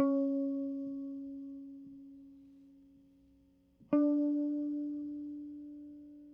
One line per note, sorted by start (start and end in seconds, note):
0.00 3.80 C#4
3.93 6.34 D4